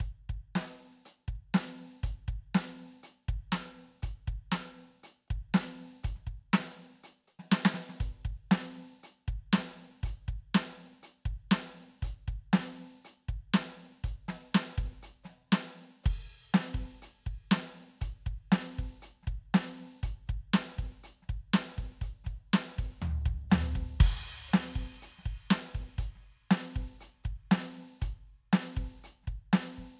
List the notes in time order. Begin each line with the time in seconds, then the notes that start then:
0.02 closed hi-hat, kick, snare
0.29 kick, closed hi-hat
0.55 closed hi-hat, snare
0.61 snare
0.78 closed hi-hat
0.91 snare
1.05 closed hi-hat
1.28 kick, closed hi-hat
1.35 kick
1.54 closed hi-hat, snare
1.59 snare
2.03 closed hi-hat, kick
2.28 kick, closed hi-hat
2.54 closed hi-hat, snare
3.03 closed hi-hat
3.26 kick, closed hi-hat
3.52 closed hi-hat, snare
4.02 closed hi-hat, kick
4.26 closed hi-hat, kick
4.52 closed hi-hat, snare
4.76 closed hi-hat
5.03 closed hi-hat
5.28 kick, closed hi-hat
5.54 closed hi-hat, snare
5.61 snare
5.78 closed hi-hat
5.93 snare
6.04 closed hi-hat, kick
6.15 snare
6.27 kick, closed hi-hat
6.53 closed hi-hat, snare
6.60 snare
6.78 closed hi-hat
6.94 snare
7.04 closed hi-hat
7.27 closed hi-hat
7.39 snare
7.51 snare, hi-hat pedal
7.65 snare
7.74 snare
7.89 snare
8.00 closed hi-hat, kick
8.25 kick, closed hi-hat
8.51 closed hi-hat, snare
8.75 closed hi-hat
8.92 snare
9.03 closed hi-hat
9.26 kick, closed hi-hat
9.53 closed hi-hat, snare
9.58 snare
9.78 closed hi-hat
10.03 closed hi-hat, kick
10.08 snare
10.27 kick, closed hi-hat
10.54 closed hi-hat, snare
11.03 closed hi-hat
11.25 kick, closed hi-hat
11.51 closed hi-hat, snare
11.78 closed hi-hat
12.02 closed hi-hat, kick
12.28 closed hi-hat, kick
12.53 closed hi-hat, snare
12.59 snare
12.76 closed hi-hat
13.05 closed hi-hat
13.28 kick, closed hi-hat
13.54 closed hi-hat, snare
13.61 snare
13.79 closed hi-hat
14.04 closed hi-hat, kick, snare
14.28 closed hi-hat, snare
14.54 closed hi-hat, snare
14.78 closed hi-hat, kick
15.03 closed hi-hat
15.24 closed hi-hat, snare, hi-hat pedal
15.52 closed hi-hat, snare
16.04 kick, hi-hat pedal, crash
16.54 closed hi-hat, snare
16.59 snare
16.74 kick, closed hi-hat
17.02 closed hi-hat
17.25 closed hi-hat, kick
17.51 closed hi-hat, snare
17.56 snare
17.74 closed hi-hat
18.01 closed hi-hat, kick
18.25 closed hi-hat, kick
18.52 closed hi-hat, snare
18.77 kick, closed hi-hat
19.02 closed hi-hat
19.23 snare
19.27 closed hi-hat, kick
19.54 closed hi-hat, snare
19.78 closed hi-hat
20.03 closed hi-hat, kick
20.27 closed hi-hat, kick
20.53 closed hi-hat, snare
20.78 kick, closed hi-hat
21.04 closed hi-hat
21.22 snare
21.29 closed hi-hat, kick
21.53 closed hi-hat, snare
21.77 closed hi-hat, kick
22.01 closed hi-hat, kick
22.24 closed hi-hat, kick, snare
22.53 closed hi-hat, snare
22.77 open hi-hat, kick
23.02 floor tom
23.26 kick, floor tom
23.50 snare, floor tom, hi-hat pedal
23.75 kick, floor tom
23.99 kick, hi-hat pedal, crash
24.48 hi-hat pedal
24.53 closed hi-hat, snare
24.75 closed hi-hat, kick
24.97 snare
25.02 closed hi-hat
25.18 snare
25.25 closed hi-hat, kick
25.50 closed hi-hat, snare
25.74 kick, closed hi-hat
25.98 closed hi-hat, kick
26.15 snare
26.22 closed hi-hat
26.51 closed hi-hat, snare
26.76 closed hi-hat, kick
27.01 closed hi-hat
27.24 closed hi-hat, kick
27.51 closed hi-hat, snare
27.57 snare
27.74 closed hi-hat
28.01 closed hi-hat, kick
28.53 closed hi-hat, snare
28.77 closed hi-hat, kick
28.97 snare
29.04 closed hi-hat
29.23 closed hi-hat, kick, snare
29.53 closed hi-hat, snare
29.77 closed hi-hat, kick